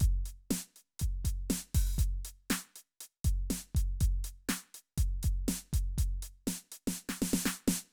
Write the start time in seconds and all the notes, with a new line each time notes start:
0.01 kick, closed hi-hat
0.26 closed hi-hat
0.51 snare, closed hi-hat
0.77 closed hi-hat
1.00 kick, closed hi-hat
1.25 kick, closed hi-hat
1.51 snare, closed hi-hat
1.75 kick, open hi-hat
1.99 kick, closed hi-hat, hi-hat pedal
2.26 closed hi-hat
2.51 snare, closed hi-hat
2.76 closed hi-hat
3.01 closed hi-hat
3.25 kick, closed hi-hat
3.51 snare, closed hi-hat
3.76 kick, closed hi-hat
4.01 kick, closed hi-hat
4.25 closed hi-hat
4.50 snare, closed hi-hat
4.75 closed hi-hat
4.98 kick, closed hi-hat
5.24 kick, closed hi-hat
5.49 snare, closed hi-hat
5.74 kick, closed hi-hat
5.99 kick, closed hi-hat
6.23 closed hi-hat
6.48 snare, closed hi-hat
6.73 closed hi-hat
6.88 snare
7.10 snare
7.23 snare
7.34 snare
7.46 snare
7.68 snare